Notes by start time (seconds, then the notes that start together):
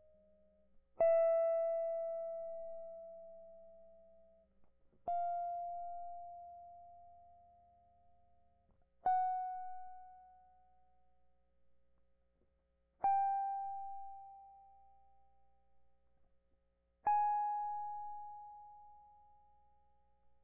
1.00 E5
5.08 F5
9.06 F#5
13.04 G5
17.07 G#5